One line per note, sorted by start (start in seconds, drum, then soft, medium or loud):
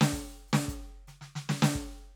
0.00 snare loud
0.13 open hi-hat medium
0.13 kick medium
0.48 hi-hat pedal soft
0.53 snare loud
0.68 open hi-hat medium
0.68 kick medium
1.07 snare soft
1.07 hi-hat pedal soft
1.21 snare soft
1.35 snare medium
1.49 snare loud
1.62 snare loud
1.75 kick medium